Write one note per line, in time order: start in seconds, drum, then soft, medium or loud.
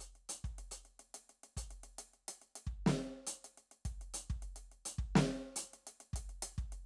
0.01 closed hi-hat medium
0.16 closed hi-hat soft
0.30 closed hi-hat loud
0.45 kick soft
0.45 closed hi-hat soft
0.59 closed hi-hat soft
0.72 closed hi-hat medium
0.86 closed hi-hat soft
1.00 closed hi-hat soft
1.15 closed hi-hat medium
1.30 closed hi-hat soft
1.44 closed hi-hat soft
1.57 closed hi-hat medium
1.57 kick soft
1.71 closed hi-hat soft
1.84 closed hi-hat soft
1.99 closed hi-hat medium
2.14 closed hi-hat soft
2.29 closed hi-hat medium
2.42 closed hi-hat soft
2.56 closed hi-hat medium
2.67 kick soft
2.73 closed hi-hat soft
2.87 snare loud
3.01 closed hi-hat soft
3.27 closed hi-hat loud
3.45 closed hi-hat medium
3.58 closed hi-hat soft
3.72 closed hi-hat soft
3.86 kick soft
3.86 closed hi-hat medium
4.02 closed hi-hat soft
4.15 closed hi-hat loud
4.30 kick soft
4.30 closed hi-hat soft
4.43 closed hi-hat soft
4.57 closed hi-hat medium
4.72 closed hi-hat soft
4.86 closed hi-hat loud
4.99 kick soft
5.16 snare loud
5.30 closed hi-hat soft
5.57 closed hi-hat loud
5.74 closed hi-hat soft
5.88 closed hi-hat medium
6.01 closed hi-hat soft
6.14 kick soft
6.14 closed hi-hat medium
6.30 closed hi-hat soft
6.43 closed hi-hat loud
6.59 kick soft
6.59 closed hi-hat soft
6.73 closed hi-hat soft